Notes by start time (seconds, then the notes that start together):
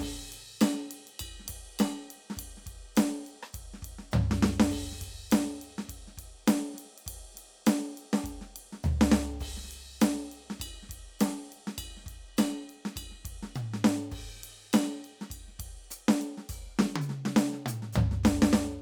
0.01 kick, crash
0.08 kick
0.12 kick
0.22 snare
0.26 snare
0.31 snare, ride
0.62 snare, hi-hat pedal, ride bell
0.75 snare
0.92 ride
1.08 ride
1.20 kick, hi-hat pedal, ride bell
1.30 kick
1.40 snare
1.46 snare, ride
1.50 kick
1.56 kick
1.80 snare, hi-hat pedal, ride bell
2.11 ride
2.31 snare
2.37 kick, hi-hat pedal, ride
2.58 snare
2.63 snare
2.67 kick, ride
2.73 kick
2.76 kick
2.96 snare, hi-hat pedal, ride
3.08 snare
3.25 hi-hat pedal, ride
3.44 cross-stick
3.53 kick, hi-hat pedal, ride
3.61 kick
3.63 kick
3.74 snare
3.83 kick, ride
3.92 kick
3.99 snare
4.12 hi-hat pedal, floor tom
4.32 snare
4.43 snare
4.60 snare
4.71 kick, crash
4.77 kick
4.92 snare
5.02 kick, ride
5.08 kick
5.11 kick
5.31 snare, hi-hat pedal, ride
5.40 snare
5.62 ride
5.79 snare
5.89 kick, ride
6.08 snare
6.18 kick, ride
6.48 snare, hi-hat pedal, ride
6.57 snare
6.75 snare, hi-hat pedal
6.79 cross-stick, ride
6.86 snare
6.99 ride
7.06 kick, hi-hat pedal, ride
7.13 kick
7.35 snare, ride
7.67 snare, hi-hat pedal, ride
7.94 hi-hat pedal, ride
8.14 snare
8.25 kick, ride
8.31 kick
8.34 kick
8.42 snare
8.57 ride
8.73 snare
8.84 floor tom, hi-hat pedal
9.02 snare
9.12 snare
9.32 snare
9.40 kick, hi-hat pedal, crash
9.47 kick
9.51 kick
9.57 snare
9.65 snare
9.72 ride
10.01 snare, hi-hat pedal, ride
10.32 ride
10.51 snare
10.60 kick, hi-hat pedal, ride bell
10.66 kick
10.69 kick
10.83 snare
10.90 kick, ride
10.98 kick
11.20 snare, hi-hat pedal, ride
11.29 snare
11.53 ride
11.68 snare
11.78 kick, ride bell
11.84 kick
11.87 kick
11.97 snare
12.04 kick, snare
12.09 snare, ride
12.13 kick
12.38 snare, hi-hat pedal, ride bell
12.48 snare
12.70 ride
12.86 snare
12.97 kick, snare, ride bell
13.02 kick
13.12 snare
13.25 kick, ride
13.32 kick
13.43 snare
13.56 hi-hat pedal, mid tom
13.74 snare
13.85 snare
14.12 kick, crash
14.19 kick
14.22 kick
14.36 snare
14.40 snare
14.44 ride
14.74 snare, hi-hat pedal, ride bell
14.83 snare
15.05 ride
15.22 snare
15.31 kick, ride bell
15.39 kick
15.49 snare
15.60 kick, ride
15.67 kick
15.91 hi-hat pedal, ride
16.09 snare
16.22 ride
16.38 snare
16.50 kick, hi-hat pedal, ride bell
16.66 snare
16.73 kick
16.80 snare
16.96 high tom
17.02 hi-hat pedal
17.10 snare
17.26 snare
17.37 snare, hi-hat pedal
17.53 snare
17.67 hi-hat pedal, mid tom
17.83 snare
17.94 kick, hi-hat pedal, floor tom
18.12 snare
18.24 kick, snare, hi-hat pedal
18.43 snare
18.54 snare
18.72 snare